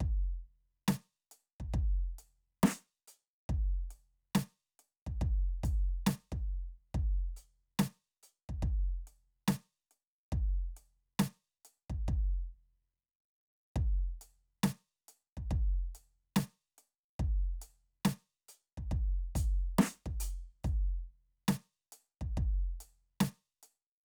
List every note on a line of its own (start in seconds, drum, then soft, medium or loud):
0.01 kick medium
0.01 crash soft
0.88 snare loud
1.32 closed hi-hat medium
1.60 kick soft
1.74 kick medium
2.19 closed hi-hat medium
2.64 snare loud
3.08 closed hi-hat medium
3.50 kick medium
3.50 crash soft
3.91 closed hi-hat soft
4.35 snare loud
4.80 closed hi-hat soft
5.07 kick soft
5.22 kick medium
5.64 kick medium
5.64 snare soft
5.64 closed hi-hat medium
6.07 snare loud
6.32 kick medium
6.95 kick medium
7.37 closed hi-hat soft
7.79 snare loud
8.23 closed hi-hat soft
8.49 kick soft
8.63 kick medium
9.08 closed hi-hat soft
9.48 snare loud
9.91 closed hi-hat soft
10.33 kick medium
10.77 closed hi-hat soft
11.20 snare loud
11.65 closed hi-hat medium
11.90 kick soft
12.09 kick medium
12.09 crash soft
13.76 kick medium
13.76 snare soft
13.76 crash soft
13.76 ride soft
14.22 closed hi-hat medium
14.64 snare loud
15.09 closed hi-hat medium
15.37 kick soft
15.51 kick medium
15.95 closed hi-hat medium
16.36 snare loud
16.79 closed hi-hat soft
17.20 kick medium
17.62 closed hi-hat medium
18.05 snare loud
18.49 closed hi-hat medium
18.78 kick soft
18.92 kick medium
19.36 closed hi-hat loud
19.36 kick medium
19.79 snare loud
20.06 kick medium
20.21 closed hi-hat loud
20.64 kick medium
20.64 hi-hat pedal soft
21.49 snare loud
21.93 closed hi-hat medium
22.21 kick soft
22.38 kick medium
22.38 crash soft
22.38 ride soft
22.81 closed hi-hat medium
23.21 snare loud
23.63 closed hi-hat medium